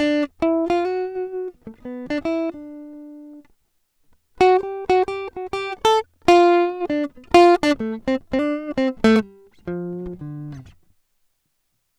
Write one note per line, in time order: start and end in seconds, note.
0.02 0.32 D4
0.44 0.72 E4
0.72 0.87 F4
0.87 1.56 F#4
1.88 2.10 B3
2.12 2.24 D4
2.27 2.59 E4
2.56 3.46 D4
4.42 4.58 F#4
4.59 4.88 G4
4.91 5.08 F#4
5.10 5.32 G4
5.10 5.34 G4
5.39 5.51 F#4
5.55 5.80 G4
5.55 5.82 G4
5.87 6.07 A4
6.30 6.92 F4
6.92 7.11 D4
7.26 7.38 C4
7.36 7.62 F4
7.65 7.81 D4
7.82 8.03 A3
8.10 8.22 C4
8.36 8.44 C#4
8.46 8.76 D4
8.79 8.97 C4
9.06 9.17 A3
9.18 9.25 A3
9.70 10.21 F3
10.23 10.54 D3